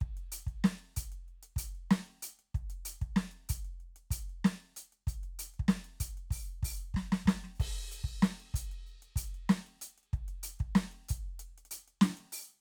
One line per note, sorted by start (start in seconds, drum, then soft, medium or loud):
0.01 kick medium
0.01 closed hi-hat soft
0.17 closed hi-hat soft
0.32 closed hi-hat loud
0.47 kick soft
0.47 closed hi-hat soft
0.64 snare loud
0.79 closed hi-hat soft
0.97 closed hi-hat loud
0.97 kick medium
1.12 closed hi-hat soft
1.28 closed hi-hat soft
1.43 closed hi-hat medium
1.56 closed hi-hat loud
1.56 kick soft
1.75 closed hi-hat soft
1.91 snare loud
2.05 closed hi-hat soft
2.23 closed hi-hat loud
2.39 closed hi-hat soft
2.55 kick medium
2.55 closed hi-hat soft
2.70 closed hi-hat medium
2.86 closed hi-hat loud
3.02 kick soft
3.02 closed hi-hat soft
3.16 snare loud
3.32 closed hi-hat soft
3.49 closed hi-hat loud
3.49 kick medium
3.65 closed hi-hat soft
3.81 open hi-hat soft
3.96 closed hi-hat soft
4.11 closed hi-hat loud
4.11 kick medium
4.30 closed hi-hat soft
4.45 snare loud
4.61 closed hi-hat soft
4.77 closed hi-hat loud
4.93 closed hi-hat soft
5.07 closed hi-hat medium
5.07 kick medium
5.24 closed hi-hat soft
5.39 closed hi-hat loud
5.54 closed hi-hat soft
5.60 kick soft
5.69 snare loud
5.85 closed hi-hat soft
6.01 closed hi-hat loud
6.01 kick medium
6.18 closed hi-hat soft
6.31 open hi-hat loud
6.31 kick medium
6.53 open hi-hat soft
6.63 open hi-hat loud
6.63 kick medium
6.94 kick soft
6.94 snare medium
6.94 hi-hat pedal soft
7.12 snare loud
7.26 kick soft
7.26 snare loud
7.44 snare soft
7.56 hi-hat pedal soft
7.60 kick medium
7.60 crash medium
7.77 closed hi-hat soft
7.92 closed hi-hat medium
8.04 kick soft
8.09 closed hi-hat soft
8.23 snare loud
8.40 closed hi-hat soft
8.54 closed hi-hat loud
8.54 kick medium
8.72 closed hi-hat soft
8.87 closed hi-hat soft
9.03 closed hi-hat soft
9.16 closed hi-hat loud
9.16 kick medium
9.35 closed hi-hat soft
9.50 snare loud
9.67 closed hi-hat soft
9.82 closed hi-hat loud
9.98 closed hi-hat soft
10.03 closed hi-hat soft
10.13 kick medium
10.13 closed hi-hat soft
10.28 closed hi-hat soft
10.43 closed hi-hat loud
10.60 kick medium
10.60 closed hi-hat soft
10.76 snare loud
10.92 closed hi-hat soft
11.09 closed hi-hat loud
11.09 kick medium
11.40 closed hi-hat medium
11.58 closed hi-hat soft
11.66 closed hi-hat soft
11.71 closed hi-hat loud
11.88 closed hi-hat soft
12.02 snare loud
12.18 closed hi-hat soft
12.33 open hi-hat loud
12.49 open hi-hat soft